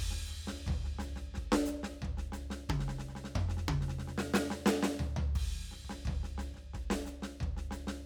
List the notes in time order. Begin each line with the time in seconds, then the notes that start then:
0.11 snare
0.26 snare, hi-hat pedal
0.47 kick, snare
0.67 kick, floor tom
0.85 snare
0.99 snare, hi-hat pedal
1.16 kick, snare
1.35 kick, snare
1.53 snare
1.66 snare, hi-hat pedal
1.84 kick, snare
2.03 kick, floor tom
2.18 snare
2.33 snare, hi-hat pedal
2.51 snare
2.70 kick, high tom
2.80 kick, snare
2.89 snare
2.99 snare
3.16 snare
3.25 snare
3.36 kick, mid tom
3.45 kick
3.49 snare
3.58 snare
3.69 kick, high tom
3.82 snare
3.89 snare
3.99 snare
4.08 snare
4.19 snare
4.35 snare
4.51 snare
4.67 snare
4.83 snare
5.00 floor tom
5.05 kick
5.17 floor tom
5.36 kick, crash
5.43 crash
5.72 snare
5.85 kick
5.90 snare
6.06 kick, floor tom
6.24 snare
6.39 snare, hi-hat pedal
6.55 kick, snare
6.74 kick, snare
6.91 snare
7.06 snare, hi-hat pedal
7.21 kick, snare
7.41 kick, floor tom
7.57 snare
7.72 snare, hi-hat pedal
7.88 snare